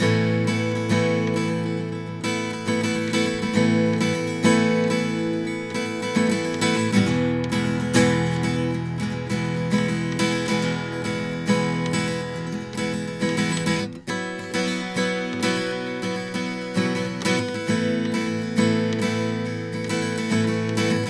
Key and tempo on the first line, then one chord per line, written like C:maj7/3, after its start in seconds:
E major, 68 BPM
0.01 A:sus2/5
7.07 E:maj
14.12 B:sus4/4
17.65 A:sus2/5